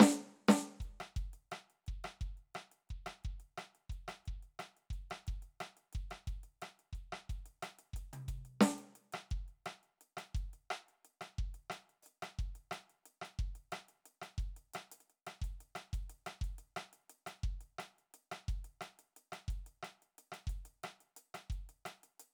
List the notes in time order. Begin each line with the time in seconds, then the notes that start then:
0.01 snare
0.48 closed hi-hat, snare
0.80 kick, closed hi-hat
1.00 cross-stick, closed hi-hat
1.16 kick, closed hi-hat
1.33 closed hi-hat
1.51 cross-stick, closed hi-hat
1.70 closed hi-hat
1.86 kick, closed hi-hat
2.04 cross-stick, closed hi-hat
2.21 kick, closed hi-hat
2.37 closed hi-hat
2.54 cross-stick, closed hi-hat
2.72 closed hi-hat
2.89 kick, closed hi-hat
3.06 cross-stick, closed hi-hat
3.24 kick, closed hi-hat
3.40 closed hi-hat
3.58 cross-stick, closed hi-hat
3.75 closed hi-hat
3.89 kick, closed hi-hat
4.08 cross-stick, closed hi-hat
4.25 kick, closed hi-hat
4.42 closed hi-hat
4.59 cross-stick, closed hi-hat
4.77 closed hi-hat
4.90 kick, closed hi-hat
5.10 cross-stick, closed hi-hat
5.27 kick, closed hi-hat
5.42 closed hi-hat
5.60 cross-stick, closed hi-hat
5.77 closed hi-hat
5.93 kick, closed hi-hat
6.10 cross-stick, closed hi-hat
6.27 kick, closed hi-hat
6.43 closed hi-hat
6.62 cross-stick, closed hi-hat
6.79 closed hi-hat
6.93 kick, closed hi-hat
7.12 cross-stick
7.29 kick, closed hi-hat
7.46 closed hi-hat
7.62 cross-stick, closed hi-hat
7.79 closed hi-hat
7.93 kick, closed hi-hat
8.13 closed hi-hat, high tom
8.28 kick, closed hi-hat
8.45 closed hi-hat
8.61 snare, closed hi-hat
8.78 closed hi-hat
8.95 closed hi-hat
9.12 cross-stick, closed hi-hat
9.31 kick, closed hi-hat
9.48 closed hi-hat
9.66 cross-stick, closed hi-hat
9.83 closed hi-hat
10.01 closed hi-hat
10.17 cross-stick, closed hi-hat
10.35 kick, closed hi-hat
10.53 closed hi-hat
10.70 cross-stick, closed hi-hat
10.88 closed hi-hat
11.05 closed hi-hat
11.21 cross-stick, closed hi-hat
11.38 kick, closed hi-hat
11.54 closed hi-hat
11.70 cross-stick, closed hi-hat
11.89 closed hi-hat
12.02 closed hi-hat, hi-hat pedal
12.22 cross-stick, closed hi-hat
12.39 kick, closed hi-hat
12.55 closed hi-hat
12.71 cross-stick, closed hi-hat
12.90 closed hi-hat
13.06 closed hi-hat
13.21 cross-stick, closed hi-hat
13.39 kick, closed hi-hat
13.55 closed hi-hat
13.72 cross-stick, closed hi-hat
13.88 closed hi-hat
14.06 closed hi-hat
14.22 cross-stick, closed hi-hat
14.38 kick, closed hi-hat
14.56 closed hi-hat
14.74 cross-stick, closed hi-hat
14.92 closed hi-hat
15.00 closed hi-hat
15.10 closed hi-hat
15.26 cross-stick, closed hi-hat
15.42 kick, closed hi-hat
15.60 closed hi-hat
15.75 cross-stick, closed hi-hat
15.93 kick, closed hi-hat
16.10 closed hi-hat
16.26 cross-stick, closed hi-hat
16.41 kick, closed hi-hat
16.58 closed hi-hat
16.76 cross-stick, closed hi-hat
16.93 closed hi-hat
17.10 closed hi-hat
17.26 cross-stick, closed hi-hat
17.43 kick, closed hi-hat
17.61 closed hi-hat
17.78 cross-stick, closed hi-hat
17.98 closed hi-hat
18.14 closed hi-hat
18.31 cross-stick, closed hi-hat
18.48 kick, closed hi-hat
18.64 closed hi-hat
18.81 cross-stick, closed hi-hat
18.99 closed hi-hat
19.16 closed hi-hat
19.32 cross-stick, closed hi-hat
19.48 kick, closed hi-hat
19.66 closed hi-hat
19.83 cross-stick, closed hi-hat
20.02 closed hi-hat
20.18 closed hi-hat
20.32 cross-stick, closed hi-hat
20.47 kick, closed hi-hat
20.65 closed hi-hat
20.83 cross-stick, closed hi-hat
21.00 closed hi-hat
21.16 closed hi-hat
21.34 cross-stick, closed hi-hat
21.50 kick, closed hi-hat
21.69 closed hi-hat
21.85 cross-stick, closed hi-hat
22.03 closed hi-hat
22.19 closed hi-hat